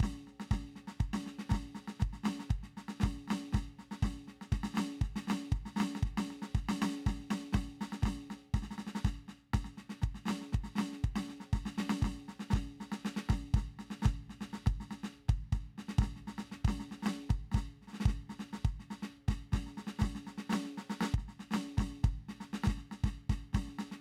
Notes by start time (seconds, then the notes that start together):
0.01 kick, snare
0.28 snare
0.41 snare
0.52 kick, snare
0.76 snare
0.88 snare
1.01 kick, snare
1.14 snare
1.27 snare
1.39 snare
1.50 kick, snare
1.53 snare
1.76 snare
1.88 snare
2.01 kick, snare
2.14 snare
2.24 snare
2.26 snare
2.40 snare
2.50 kick, snare
2.64 snare
2.78 snare
2.89 snare
3.01 kick, snare
3.04 snare
3.29 snare
3.31 snare
3.53 kick, snare
3.56 snare
3.79 snare
3.92 snare
4.03 kick, snare
4.28 snare
4.42 snare
4.53 kick, snare
4.64 snare
4.75 snare
4.78 snare
5.02 kick, snare
5.17 snare
5.28 snare
5.31 snare
5.53 kick, snare
5.66 snare
5.77 snare
5.81 snare
5.96 snare
6.03 kick, snare
6.18 snare
6.31 snare
6.43 snare
6.56 kick, snare
6.69 snare
6.83 snare
7.07 kick, snare
7.20 snare
7.31 snare
7.53 snare
7.55 kick, snare
7.82 snare
7.93 snare
8.04 kick, snare
8.31 snare
8.55 kick, snare
8.63 snare
8.71 snare
8.79 snare
8.88 snare
8.96 snare
9.05 kick, snare
9.29 snare
9.54 kick, snare
9.65 snare
9.78 snare
9.90 snare
10.03 kick, snare
10.15 snare
10.26 snare
10.29 snare
10.42 snare
10.53 kick, snare
10.64 snare
10.76 snare
10.79 snare
10.93 snare
11.05 kick, snare
11.16 snare
11.29 snare
11.41 snare
11.54 kick, snare
11.66 snare
11.79 snare
11.90 snare
12.03 kick, snare
12.05 snare
12.29 snare
12.40 snare
12.51 kick, snare
12.55 snare
12.81 snare
12.93 snare
13.06 snare
13.17 snare
13.30 kick, snare
13.31 snare
13.55 kick, snare
13.80 snare
13.91 snare
14.03 snare
14.06 kick, snare
14.30 snare
14.42 snare
14.54 snare
14.67 kick, snare
14.81 snare
14.92 snare
15.04 snare
15.29 kick, snare
15.53 kick, snare
15.79 snare
15.89 snare
15.99 kick, snare
16.03 snare
16.16 snare
16.28 snare
16.39 snare
16.52 snare
16.65 kick, snare
16.69 snare
16.80 snare
16.92 snare
17.03 snare
17.07 snare
17.30 kick, snare
17.52 kick, snare
17.56 snare
17.83 snare
17.88 snare
17.94 snare
18.01 snare
18.06 kick, snare
18.30 snare
18.40 snare
18.54 snare
18.66 kick, snare
18.80 snare
18.91 snare
19.03 snare
19.29 kick, snare
19.53 kick, snare
19.67 snare
19.78 snare
19.88 snare
20.00 kick, snare
20.03 snare
20.16 snare
20.27 snare
20.38 snare
20.50 snare
20.53 snare
20.65 snare
20.78 snare
20.91 snare
21.01 snare
21.03 snare
21.15 kick
21.19 snare
21.40 snare
21.52 snare
21.54 snare
21.78 kick, snare
21.80 snare
22.04 kick, snare
22.29 snare
22.41 snare
22.54 snare
22.64 kick, snare
22.69 snare
22.78 snare
22.92 snare
23.04 kick, snare
23.30 kick, snare
23.54 kick, snare
23.56 snare
23.68 snare
23.79 snare
23.92 snare